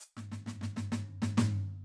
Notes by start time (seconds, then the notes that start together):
0.01 hi-hat pedal
0.17 snare, floor tom
0.32 snare, floor tom
0.47 snare, floor tom
0.62 snare, floor tom
0.77 snare, floor tom
0.92 snare, floor tom
1.22 snare, floor tom
1.38 snare, floor tom